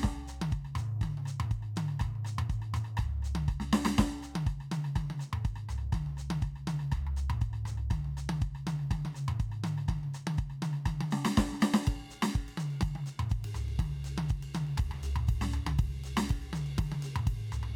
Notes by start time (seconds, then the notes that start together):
0.01 kick, snare, hi-hat pedal
0.28 cross-stick, hi-hat pedal
0.42 high tom
0.52 kick, cross-stick, hi-hat pedal
0.65 cross-stick
0.76 hi-hat pedal, mid tom
1.01 kick, cross-stick, hi-hat pedal, high tom
1.17 high tom
1.26 cross-stick, hi-hat pedal
1.40 mid tom
1.51 kick, cross-stick, hi-hat pedal
1.63 cross-stick
1.76 hi-hat pedal, high tom
1.88 cross-stick
2.00 kick, cross-stick, hi-hat pedal, mid tom
2.16 mid tom
2.25 cross-stick, hi-hat pedal
2.39 mid tom
2.50 kick, cross-stick, hi-hat pedal
2.62 cross-stick
2.74 hi-hat pedal, mid tom
2.85 cross-stick
2.97 kick, cross-stick, floor tom, hi-hat pedal
3.23 cross-stick, hi-hat pedal
3.35 high tom
3.48 kick, cross-stick, hi-hat pedal
3.60 snare
3.73 snare, hi-hat pedal
3.85 snare
3.97 kick, snare, hi-hat pedal
4.23 cross-stick, hi-hat pedal
4.36 high tom
4.47 kick, cross-stick, hi-hat pedal
4.61 cross-stick
4.72 hi-hat pedal, high tom
4.84 cross-stick
4.96 kick, cross-stick, hi-hat pedal, high tom
5.10 high tom
5.20 cross-stick, hi-hat pedal
5.33 mid tom
5.45 kick, cross-stick, hi-hat pedal
5.56 cross-stick
5.69 floor tom, hi-hat pedal
5.78 cross-stick
5.93 kick, cross-stick, hi-hat pedal, high tom
6.06 high tom
6.10 high tom
6.17 cross-stick, hi-hat pedal
6.30 high tom
6.42 kick, cross-stick, hi-hat pedal
6.56 cross-stick
6.68 hi-hat pedal, high tom
6.80 cross-stick
6.92 kick, cross-stick, floor tom, hi-hat pedal
7.07 floor tom
7.17 cross-stick, hi-hat pedal
7.30 mid tom
7.41 kick, cross-stick, hi-hat pedal
7.53 cross-stick
7.66 floor tom, hi-hat pedal
7.78 cross-stick
7.91 kick, cross-stick, hi-hat pedal, high tom
8.05 high tom
8.17 cross-stick, hi-hat pedal
8.29 high tom
8.42 kick, cross-stick, hi-hat pedal
8.55 cross-stick
8.67 hi-hat pedal, high tom
8.79 cross-stick
8.91 kick, cross-stick, hi-hat pedal, high tom
9.05 high tom
9.15 cross-stick, hi-hat pedal
9.28 mid tom
9.40 kick, cross-stick, hi-hat pedal
9.52 cross-stick
9.64 hi-hat pedal, high tom
9.78 cross-stick
9.88 kick, cross-stick, hi-hat pedal, high tom
10.03 high tom
10.14 cross-stick, hi-hat pedal
10.27 high tom
10.37 kick, cross-stick, hi-hat pedal
10.50 cross-stick
10.62 hi-hat pedal, high tom
10.73 cross-stick
10.86 kick, cross-stick, hi-hat pedal, high tom
11.01 high tom
11.11 snare, hi-hat pedal
11.25 snare
11.35 kick, snare, hi-hat pedal
11.53 snare
11.57 snare
11.59 snare, hi-hat pedal
11.62 snare
11.74 snare
11.85 kick, hi-hat pedal, ride bell
12.11 hi-hat pedal
12.23 snare
12.34 kick, hi-hat pedal, ride bell
12.48 ride bell
12.58 hi-hat pedal, high tom
12.71 ride bell
12.81 kick, hi-hat pedal, high tom, ride bell
12.95 high tom
13.06 hi-hat pedal, ride
13.19 mid tom
13.30 kick, hi-hat pedal, ride
13.45 ride
13.55 floor tom, hi-hat pedal
13.68 ride
13.79 kick, hi-hat pedal, high tom, ride
13.93 high tom
13.97 high tom
14.05 hi-hat pedal, ride
14.18 high tom
14.29 kick, hi-hat pedal, ride
14.43 ride bell
14.54 hi-hat pedal, high tom
14.67 ride
14.78 kick, floor tom, hi-hat pedal, ride
14.91 floor tom
15.03 hi-hat pedal, ride
15.16 mid tom
15.27 kick, hi-hat pedal, ride
15.41 snare
15.52 kick, floor tom, hi-hat pedal
15.67 high tom
15.77 kick, hi-hat pedal, ride
16.04 hi-hat pedal, ride
16.17 snare
16.29 kick, hi-hat pedal, ride
16.42 ride bell
16.53 hi-hat pedal, high tom
16.66 ride bell
16.78 kick, hi-hat pedal, high tom, ride
16.92 high tom
17.03 hi-hat pedal, ride
17.16 mid tom
17.27 kick, hi-hat pedal, ride
17.52 floor tom, hi-hat pedal
17.63 floor tom